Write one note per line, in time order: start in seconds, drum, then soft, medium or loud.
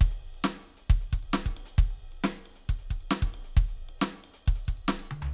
0.01 kick loud
0.01 ride loud
0.11 closed hi-hat medium
0.22 ride soft
0.34 ride medium
0.44 snare loud
0.57 ride medium
0.67 ride soft
0.77 closed hi-hat medium
0.90 kick loud
0.90 ride soft
1.01 closed hi-hat medium
1.11 kick medium
1.11 ride soft
1.23 ride medium
1.34 snare loud
1.46 kick medium
1.46 ride medium
1.57 ride loud
1.66 closed hi-hat loud
1.78 kick loud
1.78 ride medium
1.91 closed hi-hat soft
2.01 ride soft
2.12 ride medium
2.24 snare loud
2.34 ride medium
2.46 ride medium
2.56 closed hi-hat medium
2.69 kick medium
2.69 ride medium
2.79 closed hi-hat medium
2.90 kick medium
2.90 ride soft
3.01 ride medium
3.11 snare loud
3.22 kick loud
3.22 ride medium
3.34 ride loud
3.44 closed hi-hat medium
3.57 kick loud
3.57 ride soft
3.68 closed hi-hat soft
3.79 ride soft
3.89 ride loud
3.99 snare loud
3.99 hi-hat pedal soft
4.13 ride medium
4.24 ride loud
4.34 closed hi-hat medium
4.46 kick loud
4.46 ride medium
4.56 closed hi-hat medium
4.66 kick medium
4.66 ride bell soft
4.77 ride bell soft
4.88 snare loud
5.00 ride bell medium
5.11 high tom loud
5.22 floor tom loud